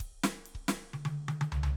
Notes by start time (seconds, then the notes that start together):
0.00 kick, ride
0.24 snare, ride
0.46 ride
0.55 kick
0.68 snare, ride
0.93 high tom
1.05 high tom
1.28 high tom
1.41 high tom
1.52 floor tom
1.63 floor tom